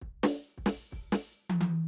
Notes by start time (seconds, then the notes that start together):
0.02 kick
0.23 closed hi-hat, snare
0.47 open hi-hat
0.58 kick
0.66 open hi-hat, snare
0.91 open hi-hat, kick
1.12 open hi-hat, snare
1.50 high tom
1.61 high tom